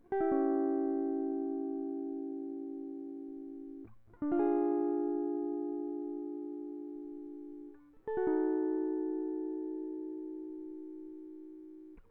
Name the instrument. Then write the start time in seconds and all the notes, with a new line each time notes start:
electric guitar
0.12 G4
0.21 E4
0.32 C#4
4.22 D4
4.32 F4
4.40 G#4
7.13 F4
8.08 A4
8.18 F#4
8.28 D#4